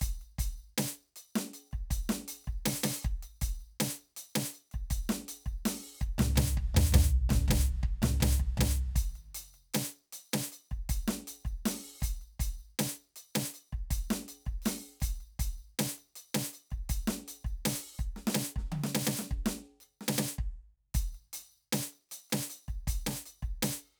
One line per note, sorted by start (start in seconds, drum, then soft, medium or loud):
0.01 closed hi-hat loud
0.01 kick medium
0.01 hi-hat pedal soft
0.22 closed hi-hat soft
0.39 closed hi-hat loud
0.39 kick medium
0.60 closed hi-hat soft
0.78 closed hi-hat loud
0.78 snare loud
1.17 closed hi-hat medium
1.36 snare loud
1.54 closed hi-hat medium
1.72 kick soft
1.72 closed hi-hat soft
1.91 closed hi-hat loud
1.91 kick medium
2.10 snare loud
2.10 closed hi-hat soft
2.29 closed hi-hat loud
2.45 kick soft
2.45 closed hi-hat soft
2.66 snare loud
2.66 percussion loud
2.84 snare loud
2.84 percussion loud
3.03 kick medium
3.03 hi-hat pedal medium
3.23 closed hi-hat medium
3.42 closed hi-hat loud
3.42 kick medium
3.61 closed hi-hat soft
3.81 closed hi-hat loud
3.81 snare loud
4.00 closed hi-hat soft
4.17 closed hi-hat loud
4.36 snare loud
4.36 closed hi-hat medium
4.54 closed hi-hat medium
4.72 kick soft
4.72 closed hi-hat soft
4.91 closed hi-hat loud
4.91 kick medium
5.10 snare loud
5.29 closed hi-hat loud
5.47 kick soft
5.47 closed hi-hat soft
5.66 snare loud
5.66 percussion loud
6.01 kick medium
6.01 hi-hat pedal medium
6.19 snare loud
6.19 floor tom loud
6.36 snare loud
6.36 floor tom loud
6.36 hi-hat pedal medium
6.58 kick medium
6.75 snare loud
6.75 floor tom loud
6.93 snare loud
6.93 floor tom loud
6.99 floor tom medium
7.30 snare loud
7.30 floor tom loud
7.49 snare loud
7.49 floor tom loud
7.84 kick medium
8.03 snare loud
8.03 floor tom loud
8.21 snare loud
8.21 floor tom loud
8.40 kick medium
8.58 snare loud
8.58 floor tom loud
8.96 closed hi-hat loud
8.96 kick medium
9.16 closed hi-hat soft
9.35 closed hi-hat loud
9.55 closed hi-hat soft
9.75 closed hi-hat loud
9.75 snare loud
9.94 closed hi-hat soft
10.13 closed hi-hat loud
10.34 snare loud
10.34 closed hi-hat soft
10.53 closed hi-hat medium
10.72 kick soft
10.72 closed hi-hat soft
10.90 closed hi-hat loud
10.90 kick medium
11.08 snare loud
11.28 closed hi-hat loud
11.46 kick soft
11.46 closed hi-hat soft
11.66 snare loud
11.66 percussion loud
12.01 closed hi-hat loud
12.01 kick medium
12.01 hi-hat pedal medium
12.22 closed hi-hat soft
12.40 closed hi-hat loud
12.40 kick medium
12.61 closed hi-hat soft
12.80 closed hi-hat loud
12.80 snare loud
12.98 closed hi-hat soft
13.17 closed hi-hat medium
13.36 snare loud
13.36 closed hi-hat medium
13.55 closed hi-hat medium
13.73 kick soft
13.73 closed hi-hat soft
13.91 closed hi-hat loud
13.91 kick medium
14.11 snare loud
14.29 closed hi-hat medium
14.46 kick medium
14.46 closed hi-hat soft
14.63 snare loud
14.63 hi-hat pedal soft
14.63 percussion loud
15.01 closed hi-hat loud
15.01 kick medium
15.01 hi-hat pedal medium
15.21 closed hi-hat soft
15.40 closed hi-hat loud
15.40 kick medium
15.59 closed hi-hat soft
15.80 closed hi-hat loud
15.80 snare loud
15.99 closed hi-hat soft
16.16 closed hi-hat medium
16.35 snare loud
16.35 closed hi-hat medium
16.54 closed hi-hat medium
16.71 kick soft
16.71 closed hi-hat soft
16.90 closed hi-hat loud
16.90 kick medium
17.08 snare loud
17.29 closed hi-hat loud
17.45 kick soft
17.45 closed hi-hat soft
17.66 snare loud
17.66 percussion loud
17.99 kick medium
17.99 hi-hat pedal soft
18.17 snare medium
18.28 snare loud
18.35 snare loud
18.35 hi-hat pedal medium
18.57 kick medium
18.57 snare soft
18.65 snare soft
18.73 high tom loud
18.77 kick soft
18.84 snare loud
18.95 snare loud
19.07 snare loud
19.20 snare medium
19.32 kick medium
19.47 snare loud
19.81 hi-hat pedal soft
20.02 snare medium
20.09 snare loud
20.39 kick medium
20.95 closed hi-hat loud
20.95 kick medium
21.15 closed hi-hat soft
21.34 closed hi-hat loud
21.54 closed hi-hat soft
21.73 closed hi-hat loud
21.73 snare loud
21.93 closed hi-hat soft
22.10 closed hi-hat loud
22.10 hi-hat pedal soft
22.31 snare loud
22.31 closed hi-hat soft
22.50 closed hi-hat loud
22.69 kick soft
22.69 closed hi-hat soft
22.87 closed hi-hat loud
22.87 kick medium
22.87 cross-stick soft
23.07 snare loud
23.07 closed hi-hat soft
23.26 closed hi-hat medium
23.43 kick soft
23.43 closed hi-hat soft
23.63 snare loud
23.63 hi-hat pedal medium
23.63 percussion loud